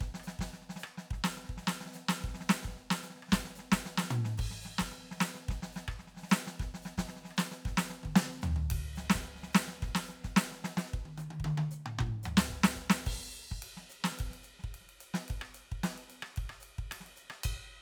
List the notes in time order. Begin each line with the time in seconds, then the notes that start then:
0.01 kick, snare
0.07 kick
0.15 snare
0.20 cross-stick, hi-hat pedal
0.28 snare
0.39 kick, snare
0.54 snare
0.62 snare
0.70 snare
0.76 snare, hi-hat pedal
0.83 cross-stick, snare
0.98 snare
1.11 kick, snare
1.24 snare
1.32 hi-hat pedal
1.37 snare
1.44 snare
1.49 kick, snare
1.58 snare
1.63 snare
1.67 snare
1.81 snare
1.86 snare
1.94 snare, hi-hat pedal
2.09 snare
2.21 kick, snare
2.28 kick, snare
2.35 snare
2.41 snare
2.49 snare, hi-hat pedal
2.63 kick, snare
2.68 snare
2.77 snare
2.91 snare
3.03 snare, hi-hat pedal
3.10 snare
3.16 snare
3.23 cross-stick
3.29 snare
3.32 kick, snare
3.45 snare
3.50 snare
3.56 snare, hi-hat pedal
3.72 kick, snare
3.86 snare
3.98 snare
4.04 snare
4.11 hi-hat pedal, mid tom
4.25 snare
4.38 kick, crash
4.47 kick
4.51 kick, snare
4.62 snare, hi-hat pedal
4.79 kick, snare
4.91 snare
4.99 snare
5.04 snare
5.11 snare
5.18 snare, hi-hat pedal
5.21 snare
5.35 snare
5.49 kick, snare
5.56 kick
5.63 snare
5.73 snare, hi-hat pedal
5.88 kick, cross-stick
5.94 kick
5.99 snare
6.07 snare
6.15 snare
6.17 snare
6.23 snare
6.30 snare, hi-hat pedal
6.47 snare
6.60 kick, snare
6.66 kick
6.74 snare
6.82 snare, hi-hat pedal
6.98 kick, snare
7.03 kick
7.16 snare
7.24 snare
7.25 snare
7.31 cross-stick
7.37 snare, hi-hat pedal
7.52 snare
7.66 kick, snare
7.72 kick
7.78 snare
7.89 snare, hi-hat pedal
8.04 kick, high tom
8.16 snare
8.30 high tom
8.42 floor tom, hi-hat pedal
8.56 high tom
8.71 kick, ride
8.79 kick
8.84 kick
8.96 snare, hi-hat pedal
9.10 snare
9.15 kick, snare
9.25 snare
9.30 snare
9.34 snare
9.36 snare
9.43 snare
9.49 snare, hi-hat pedal
9.55 snare
9.68 snare
9.83 kick, snare
9.89 kick
9.95 snare
10.06 snare, hi-hat pedal
10.24 kick, snare
10.37 snare
10.52 snare
10.65 snare, hi-hat pedal
10.77 snare
10.94 kick
11.00 kick
11.06 high tom
11.18 hi-hat pedal, high tom
11.31 high tom
11.40 kick
11.45 high tom
11.58 high tom
11.71 hi-hat pedal
11.86 mid tom
11.99 kick, mid tom
12.07 kick
12.23 hi-hat pedal, floor tom
12.37 snare
12.50 kick
12.64 snare
12.76 kick, hi-hat pedal
12.90 snare
13.06 kick, crash
13.14 kick, snare
13.20 kick
13.32 hi-hat pedal
13.51 kick, snare
13.59 kick, ride
13.77 snare
13.90 hi-hat pedal, ride
14.04 snare
14.12 snare
14.19 kick, ride
14.27 kick, snare
14.34 ride
14.44 hi-hat pedal, ride
14.59 snare
14.64 kick
14.75 ride
14.81 snare
14.87 snare, ride
15.01 hi-hat pedal, ride
15.14 snare
15.29 kick, ride
15.42 cross-stick
15.54 hi-hat pedal, ride
15.72 kick
15.84 snare, ride
15.95 snare, ride
16.10 hi-hat pedal, ride
16.23 cross-stick
16.37 kick, ride
16.44 kick
16.50 cross-stick
16.61 hi-hat pedal, ride
16.79 kick
16.92 cross-stick, ride
17.01 snare
17.07 ride
17.16 hi-hat pedal, ride
17.30 cross-stick
17.44 kick, ride bell
17.52 kick
17.56 kick